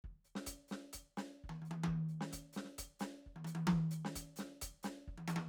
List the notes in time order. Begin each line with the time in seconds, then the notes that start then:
0.04 kick
0.24 hi-hat pedal
0.35 snare
0.46 closed hi-hat, kick
0.68 snare, hi-hat pedal
0.93 closed hi-hat, kick
1.17 snare, hi-hat pedal
1.44 kick
1.49 high tom
1.62 hi-hat pedal, high tom
1.71 high tom
1.83 high tom
1.87 kick
2.08 hi-hat pedal
2.21 snare
2.31 closed hi-hat, kick, snare
2.53 snare, hi-hat pedal
2.64 snare
2.78 closed hi-hat, kick
2.99 snare, hi-hat pedal
3.26 kick
3.36 high tom
3.44 hi-hat pedal, high tom
3.55 high tom
3.67 high tom
3.72 kick
3.91 hi-hat pedal
4.05 snare
4.15 closed hi-hat, kick
4.36 snare, hi-hat pedal
4.61 closed hi-hat, kick
4.83 snare, hi-hat pedal
5.07 kick
5.17 high tom
5.28 hi-hat pedal, high tom
5.36 high tom